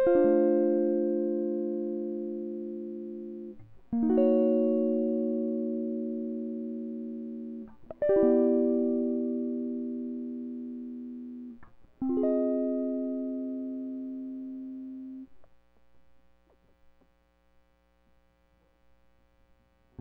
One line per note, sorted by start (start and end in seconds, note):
0.00 3.54 C5
0.07 3.54 F4
0.16 3.38 A3
0.16 3.54 D4
3.94 7.64 A#3
4.03 7.68 D#4
4.10 7.66 F#4
4.18 7.68 C#5
8.03 10.28 D5
8.10 10.93 G4
8.17 11.55 E4
8.24 11.58 B3
12.02 15.28 C4
12.10 14.54 F4
12.17 14.15 G#4
12.24 14.45 D#5